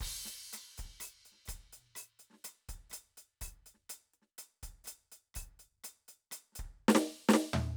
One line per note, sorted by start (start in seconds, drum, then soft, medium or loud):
0.01 kick soft
0.01 crash medium
0.07 kick soft
0.10 kick soft
0.26 closed hi-hat medium
0.26 snare soft
0.53 open hi-hat medium
0.53 cross-stick soft
0.53 snare soft
0.78 closed hi-hat soft
0.78 kick soft
0.85 snare soft
1.00 open hi-hat medium
1.00 cross-stick soft
1.26 closed hi-hat soft
1.32 snare soft
1.34 snare soft
1.46 closed hi-hat medium
1.46 kick soft
1.46 cross-stick soft
1.46 hi-hat pedal soft
1.73 closed hi-hat soft
1.77 mid tom soft
1.96 open hi-hat medium
1.96 cross-stick soft
2.20 closed hi-hat soft
2.30 snare soft
2.32 snare soft
2.45 closed hi-hat medium
2.45 cross-stick soft
2.69 closed hi-hat soft
2.69 kick soft
2.90 closed hi-hat medium
2.90 cross-stick soft
2.90 hi-hat pedal soft
3.18 closed hi-hat soft
3.42 open hi-hat medium
3.42 kick soft
3.42 cross-stick soft
3.66 closed hi-hat soft
3.75 snare soft
3.90 closed hi-hat medium
3.90 cross-stick soft
4.14 closed hi-hat soft
4.22 snare soft
4.39 closed hi-hat medium
4.39 cross-stick soft
4.63 closed hi-hat soft
4.63 kick soft
4.85 closed hi-hat medium
4.85 cross-stick soft
4.85 hi-hat pedal medium
5.12 closed hi-hat soft
5.35 open hi-hat medium
5.35 kick soft
5.35 cross-stick soft
5.60 closed hi-hat soft
5.84 closed hi-hat medium
5.84 cross-stick soft
6.09 closed hi-hat soft
6.31 closed hi-hat medium
6.31 cross-stick soft
6.31 snare soft
6.53 closed hi-hat medium
6.53 snare soft
6.59 kick soft
6.65 kick soft
6.89 snare loud
6.95 snare loud
7.29 snare loud
7.34 snare loud
7.54 floor tom loud